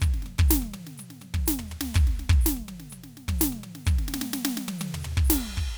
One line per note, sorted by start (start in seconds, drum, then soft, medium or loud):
0.01 kick loud
0.01 hi-hat pedal medium
0.01 high tom medium
0.14 snare soft
0.23 snare soft
0.23 high tom medium
0.39 kick loud
0.39 high tom medium
0.49 snare loud
0.49 hi-hat pedal medium
0.62 high tom medium
0.71 hi-hat pedal soft
0.71 high tom medium
0.87 snare soft
0.98 hi-hat pedal medium
0.98 high tom medium
1.11 snare soft
1.20 snare soft
1.20 hi-hat pedal soft
1.20 high tom medium
1.34 kick medium
1.34 high tom medium
1.46 snare loud
1.46 hi-hat pedal medium
1.59 floor tom medium
1.67 kick soft
1.67 hi-hat pedal soft
1.72 floor tom medium
1.81 snare loud
1.94 kick loud
1.94 floor tom loud
1.94 hi-hat pedal medium
2.08 snare soft
2.15 hi-hat pedal soft
2.20 snare soft
2.30 kick loud
2.30 high tom medium
2.41 hi-hat pedal medium
2.46 snare loud
2.57 high tom soft
2.64 hi-hat pedal soft
2.69 high tom medium
2.80 snare soft
2.90 kick soft
2.90 hi-hat pedal medium
2.90 high tom medium
3.04 snare soft
3.13 hi-hat pedal soft
3.18 snare soft
3.29 kick medium
3.29 high tom loud
3.39 snare loud
3.39 hi-hat pedal medium
3.53 high tom medium
3.61 hi-hat pedal soft
3.61 high tom medium
3.75 snare soft
3.86 kick loud
3.86 hi-hat pedal medium
3.86 high tom medium
3.99 snare soft
4.08 kick soft
4.08 snare medium
4.08 hi-hat pedal soft
4.14 snare loud
4.22 snare medium
4.33 snare loud
4.33 hi-hat pedal medium
4.45 snare loud
4.54 snare medium
4.54 hi-hat pedal medium
4.69 high tom loud
4.79 hi-hat pedal medium
4.79 high tom loud
4.95 floor tom loud
5.01 hi-hat pedal medium
5.05 floor tom loud
5.18 kick loud
5.25 hi-hat pedal medium
5.30 snare loud
5.30 crash medium
5.58 kick medium